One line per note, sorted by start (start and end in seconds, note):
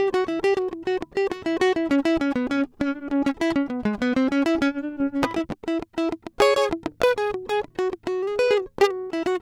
0.00 0.12 G4
0.15 0.27 F#4
0.30 0.41 E4
0.45 0.57 G4
0.59 0.69 F#4
0.70 0.77 F4
0.88 1.00 F#4
1.18 1.30 G4
1.33 1.45 F#4
1.48 1.60 E4
1.62 1.75 F#4
1.78 1.91 E4
1.92 2.05 C#4
2.06 2.21 E4
2.22 2.35 C#4
2.37 2.50 B3
2.52 2.70 C#4
2.82 2.96 C#4
3.13 3.25 C#4
3.42 3.60 E4
3.57 3.69 C#4
3.71 3.86 B3
3.87 4.00 G#3
4.03 4.18 B3
4.18 4.30 C4
4.33 4.50 C#4
4.47 4.64 E4
4.63 4.72 C#4
5.24 5.33 E4
5.38 5.48 E4
5.69 5.82 E4
5.99 6.10 E4
6.41 6.56 G#4
6.41 6.56 C#5
6.58 6.78 G#4
6.58 6.73 C#5
7.03 7.17 B4
7.19 7.36 G#4
7.50 7.65 G#4
7.80 7.92 F#4
8.08 8.23 F#4
8.24 8.40 G#4
8.40 8.59 B4
8.52 8.61 G#4
8.83 9.12 F#4
9.15 9.27 E4
9.28 9.41 F#4